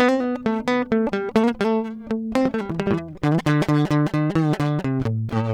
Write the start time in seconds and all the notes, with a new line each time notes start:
0.00 B3
0.10 C4
0.22 B3
0.47 A3
0.69 B3
0.93 A3
1.15 G3
1.37 A#3
1.62 A3
2.12 A3
2.37 C4
2.56 A3
2.67 G3
2.71 E3
2.81 G3
2.89 E3 G3
3.25 D#3
3.48 D3
3.71 D3
3.93 D3
4.16 D#3
4.37 D#3
4.46 D3
4.62 D3
4.86 C3
5.08 A2
5.39 A2